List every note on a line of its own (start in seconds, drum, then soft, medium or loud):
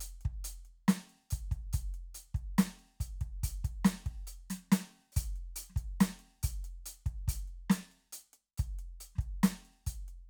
0.01 closed hi-hat loud
0.21 closed hi-hat soft
0.25 kick medium
0.45 closed hi-hat loud
0.65 closed hi-hat soft
0.89 closed hi-hat loud
0.89 snare loud
1.10 closed hi-hat soft
1.31 closed hi-hat loud
1.31 kick medium
1.52 kick medium
1.52 closed hi-hat soft
1.73 closed hi-hat loud
1.73 kick medium
1.94 closed hi-hat soft
2.15 closed hi-hat medium
2.35 kick soft
2.35 closed hi-hat soft
2.59 closed hi-hat loud
2.59 snare loud
2.79 closed hi-hat soft
3.01 closed hi-hat medium
3.01 kick soft
3.21 kick soft
3.21 closed hi-hat soft
3.44 closed hi-hat loud
3.44 kick soft
3.65 kick medium
3.65 closed hi-hat medium
3.85 closed hi-hat loud
3.85 snare loud
4.06 kick medium
4.06 closed hi-hat soft
4.27 closed hi-hat medium
4.50 closed hi-hat loud
4.50 snare medium
4.72 closed hi-hat loud
4.72 snare loud
5.13 hi-hat pedal soft
5.17 closed hi-hat loud
5.17 kick medium
5.36 closed hi-hat soft
5.56 closed hi-hat loud
5.70 snare soft
5.77 kick medium
5.77 closed hi-hat medium
6.01 closed hi-hat loud
6.01 snare loud
6.20 closed hi-hat soft
6.43 closed hi-hat loud
6.43 kick medium
6.65 closed hi-hat medium
6.86 closed hi-hat loud
7.06 kick medium
7.06 closed hi-hat soft
7.28 closed hi-hat loud
7.28 kick medium
7.34 snare soft
7.48 closed hi-hat soft
7.70 closed hi-hat loud
7.70 snare loud
7.92 closed hi-hat soft
8.13 closed hi-hat loud
8.34 closed hi-hat soft
8.58 closed hi-hat medium
8.58 kick medium
8.79 closed hi-hat soft
9.01 closed hi-hat medium
9.16 kick medium
9.16 snare soft
9.21 closed hi-hat soft
9.44 closed hi-hat loud
9.44 snare loud
9.66 closed hi-hat soft
9.87 closed hi-hat medium
9.87 kick soft
10.09 closed hi-hat soft